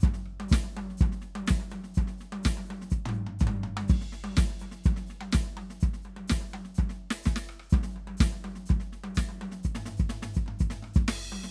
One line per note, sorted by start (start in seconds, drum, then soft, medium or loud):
0.01 kick loud
0.01 hi-hat pedal medium
0.06 high tom loud
0.14 snare soft
0.24 cross-stick soft
0.24 hi-hat pedal soft
0.41 high tom loud
0.49 kick loud
0.49 hi-hat pedal medium
0.53 snare loud
0.65 high tom medium
0.73 hi-hat pedal soft
0.78 high tom loud
0.91 snare soft
0.98 kick loud
0.98 hi-hat pedal medium
1.03 high tom loud
1.13 snare soft
1.22 snare soft
1.22 hi-hat pedal soft
1.36 high tom loud
1.47 kick loud
1.47 snare loud
1.47 hi-hat pedal medium
1.61 high tom medium
1.71 hi-hat pedal soft
1.71 high tom loud
1.84 snare soft
1.95 kick loud
1.95 hi-hat pedal medium
1.99 high tom loud
2.08 snare soft
2.18 snare soft
2.18 hi-hat pedal soft
2.33 high tom loud
2.44 kick loud
2.44 snare loud
2.44 hi-hat pedal medium
2.58 high tom medium
2.66 hi-hat pedal soft
2.71 high tom loud
2.82 snare soft
2.91 kick medium
2.91 hi-hat pedal medium
3.06 floor tom loud
3.06 high tom loud
3.14 hi-hat pedal soft
3.27 floor tom medium
3.40 kick loud
3.40 floor tom loud
3.40 hi-hat pedal medium
3.48 high tom loud
3.63 floor tom loud
3.63 hi-hat pedal soft
3.78 high tom loud
3.89 kick loud
3.89 hi-hat pedal medium
3.89 ride medium
4.02 snare soft
4.13 snare soft
4.13 hi-hat pedal soft
4.25 high tom loud
4.37 kick loud
4.37 snare loud
4.37 hi-hat pedal medium
4.50 high tom soft
4.60 hi-hat pedal medium
4.60 high tom medium
4.72 snare soft
4.85 kick loud
4.85 hi-hat pedal medium
4.85 high tom loud
4.97 snare soft
5.07 snare soft
5.07 hi-hat pedal soft
5.21 high tom medium
5.33 kick loud
5.33 snare loud
5.33 hi-hat pedal medium
5.45 high tom medium
5.58 high tom medium
5.71 snare soft
5.81 kick loud
5.81 hi-hat pedal medium
5.81 high tom medium
5.94 snare soft
6.03 hi-hat pedal soft
6.03 high tom medium
6.17 high tom medium
6.28 snare loud
6.28 hi-hat pedal medium
6.33 kick medium
6.42 high tom medium
6.50 hi-hat pedal soft
6.50 high tom medium
6.65 snare soft
6.75 hi-hat pedal medium
6.75 high tom medium
6.79 kick loud
6.90 snare soft
6.96 hi-hat pedal soft
7.11 snare loud
7.24 snare medium
7.24 hi-hat pedal medium
7.28 kick loud
7.37 snare medium
7.45 hi-hat pedal soft
7.50 cross-stick medium
7.60 cross-stick medium
7.71 kick loud
7.71 hi-hat pedal medium
7.75 high tom loud
7.84 snare medium
7.92 hi-hat pedal soft
7.97 high tom medium
8.08 high tom medium
8.18 kick loud
8.18 snare loud
8.18 hi-hat pedal medium
8.33 high tom medium
8.39 hi-hat pedal soft
8.45 high tom loud
8.56 snare soft
8.67 hi-hat pedal medium
8.67 high tom medium
8.71 kick loud
8.81 snare soft
8.93 snare soft
9.04 high tom loud
9.15 kick medium
9.15 snare loud
9.15 hi-hat pedal medium
9.30 high tom medium
9.37 hi-hat pedal soft
9.42 high tom loud
9.52 snare soft
9.64 kick medium
9.64 hi-hat pedal medium
9.76 snare medium
9.76 floor tom medium
9.86 snare medium
9.86 floor tom medium
9.98 kick loud
9.98 hi-hat pedal medium
10.10 snare medium
10.10 floor tom medium
10.23 snare medium
10.23 floor tom medium
10.35 kick medium
10.35 hi-hat pedal medium
10.47 floor tom medium
10.47 high tom medium
10.60 kick loud
10.60 hi-hat pedal medium
10.71 snare medium
10.71 floor tom medium
10.83 cross-stick medium
10.83 floor tom medium
10.95 kick loud
10.95 hi-hat pedal medium
11.09 snare loud
11.09 crash loud
11.33 high tom loud
11.44 snare medium